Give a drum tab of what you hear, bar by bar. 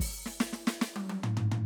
HH |o-----------|
SD |--ooooo-----|
T1 |-------oo---|
FT |---------ooo|
BD |o-----------|